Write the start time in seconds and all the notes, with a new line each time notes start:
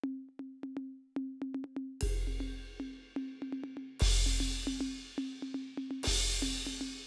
0.03 high tom
0.29 high tom
0.39 high tom
0.63 high tom
0.77 high tom
1.16 high tom
1.42 high tom
1.54 high tom
1.64 high tom
1.76 high tom
2.01 kick, ride
2.27 high tom
2.40 high tom
2.67 high tom
2.80 high tom
3.16 high tom
3.42 high tom
3.52 high tom
3.63 high tom
3.77 high tom
3.99 kick, ride
4.26 high tom
4.40 high tom
4.67 high tom
4.81 high tom
5.18 high tom
5.42 high tom
5.54 high tom
5.77 high tom
5.91 high tom
6.03 ride
6.07 kick
6.42 high tom
6.66 high tom
6.81 high tom